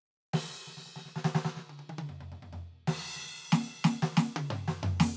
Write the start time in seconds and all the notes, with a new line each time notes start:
0.34 snare, crash
0.51 snare
0.55 hi-hat pedal
0.68 snare
0.78 snare
0.87 snare
0.97 snare
1.06 snare
1.17 snare
1.25 snare
1.36 snare
1.46 snare
1.57 snare
1.70 high tom
1.80 high tom
1.90 high tom
1.99 high tom
2.10 floor tom
2.21 floor tom
2.33 floor tom
2.43 floor tom
2.53 floor tom
2.88 snare, ride
3.06 snare
3.17 snare
3.22 snare
3.26 snare
3.38 snare
3.41 snare
3.44 snare
3.48 snare
3.53 snare
3.65 snare
3.71 snare
3.75 snare
3.79 snare
3.82 snare
3.85 snare
4.03 snare
4.18 snare
4.37 high tom
4.51 mid tom
4.69 snare
4.84 floor tom
5.01 open hi-hat, snare